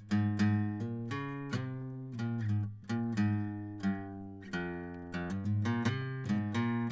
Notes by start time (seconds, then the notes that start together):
0.13 G#2
0.41 G#2
0.82 A#2
1.12 C#3
1.54 C3
2.21 A#2
2.41 G#2
2.91 A#2
3.19 G#2
3.85 G2
4.55 F2
5.15 F2
5.32 G2
5.47 G#2
5.67 A#2
5.87 C3
6.27 G#2
6.56 A#2